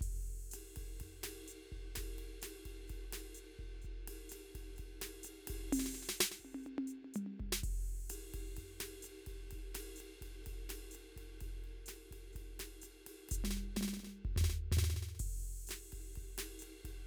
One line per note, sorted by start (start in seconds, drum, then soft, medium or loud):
0.01 kick soft
0.01 crash medium
0.51 snare soft
0.51 hi-hat pedal medium
0.51 ride medium
0.76 kick soft
0.76 ride medium
0.82 kick soft
0.99 kick soft
0.99 hi-hat pedal soft
0.99 ride soft
1.06 kick soft
1.23 snare soft
1.23 ride medium
1.48 hi-hat pedal medium
1.72 kick soft
1.77 kick soft
1.95 kick soft
1.95 snare soft
1.95 hi-hat pedal soft
1.95 ride medium
2.02 kick soft
2.18 ride soft
2.42 snare soft
2.42 hi-hat pedal medium
2.42 ride medium
2.65 kick soft
2.65 ride soft
2.88 kick soft
2.88 hi-hat pedal soft
2.88 ride soft
2.95 kick soft
3.13 snare soft
3.13 ride medium
3.34 hi-hat pedal medium
3.59 kick soft
3.59 ride soft
3.64 kick soft
3.81 kick soft
3.81 hi-hat pedal soft
4.07 snare soft
4.07 ride medium
4.29 snare soft
4.29 hi-hat pedal medium
4.29 ride medium
4.55 kick soft
4.55 ride soft
4.76 kick soft
4.76 hi-hat pedal soft
4.76 ride soft
5.01 snare soft
5.01 ride medium
5.23 hi-hat pedal medium
5.23 ride medium
5.47 kick soft
5.47 ride medium
5.72 hi-hat pedal loud
5.72 high tom loud
5.79 snare medium
5.86 snare soft
5.94 snare soft
6.02 snare soft
6.09 snare medium
6.20 snare loud
6.31 snare soft
6.39 kick soft
6.45 high tom soft
6.54 high tom medium
6.63 hi-hat pedal soft
6.63 high tom medium
6.78 high tom loud
6.87 hi-hat pedal medium
7.04 high tom soft
7.14 hi-hat pedal medium
7.14 mid tom medium
7.26 high tom soft
7.39 kick soft
7.39 mid tom medium
7.45 kick soft
7.52 snare medium
7.63 kick soft
7.63 crash medium
7.70 kick soft
8.09 hi-hat pedal medium
8.09 ride medium
8.34 kick soft
8.34 snare soft
8.34 ride medium
8.56 kick soft
8.56 hi-hat pedal soft
8.56 ride soft
8.63 kick soft
8.63 snare soft
8.80 snare soft
8.80 ride medium
9.02 hi-hat pedal medium
9.02 ride soft
9.26 kick soft
9.26 ride soft
9.50 kick soft
9.50 hi-hat pedal soft
9.50 ride soft
9.57 kick soft
9.74 snare soft
9.74 ride medium
9.96 hi-hat pedal medium
10.00 ride soft
10.21 kick soft
10.21 ride soft
10.44 kick soft
10.44 hi-hat pedal soft
10.44 ride soft
10.52 kick soft
10.69 snare soft
10.69 ride medium
10.91 hi-hat pedal medium
10.91 ride soft
11.16 kick soft
11.16 ride soft
11.40 kick soft
11.40 hi-hat pedal soft
11.40 ride soft
11.46 kick soft
11.64 ride soft
11.86 snare soft
11.86 hi-hat pedal medium
11.86 ride medium
12.11 kick soft
12.11 ride soft
12.33 kick soft
12.33 hi-hat pedal soft
12.33 ride soft
12.40 kick soft
12.59 snare soft
12.59 ride medium
12.81 hi-hat pedal medium
12.81 ride soft
13.06 ride medium
13.29 kick soft
13.29 hi-hat pedal loud
13.29 ride soft
13.38 kick soft
13.44 snare medium
13.44 mid tom medium
13.47 snare medium
13.47 mid tom soft
13.51 mid tom soft
13.56 snare soft
13.76 snare medium
13.76 mid tom loud
13.81 snare medium
13.81 mid tom medium
13.85 snare soft
13.85 mid tom medium
13.89 mid tom soft
13.93 snare soft
13.93 mid tom soft
13.97 snare soft
13.97 mid tom soft
14.00 mid tom soft
14.03 snare soft
14.03 mid tom soft
14.09 snare soft
14.25 kick soft
14.31 kick soft
14.36 snare medium
14.36 floor tom medium
14.41 snare medium
14.41 floor tom medium
14.46 snare soft
14.46 floor tom soft
14.53 floor tom soft
14.72 snare medium
14.72 floor tom loud
14.77 snare medium
14.77 floor tom medium
14.83 snare medium
14.83 floor tom medium
14.89 snare soft
14.89 floor tom soft
14.94 snare soft
14.94 floor tom soft
15.02 snare soft
15.08 snare soft
15.15 snare soft
15.19 kick soft
15.19 crash medium
15.26 kick soft
15.67 snare soft
15.67 hi-hat pedal medium
15.67 ride medium
15.92 kick soft
15.92 ride soft
16.13 hi-hat pedal soft
16.13 ride soft
16.17 kick soft
16.22 kick soft
16.38 snare soft
16.38 snare medium
16.38 ride medium
16.59 hi-hat pedal medium
16.59 ride soft
16.85 kick soft
16.85 ride soft
16.90 kick soft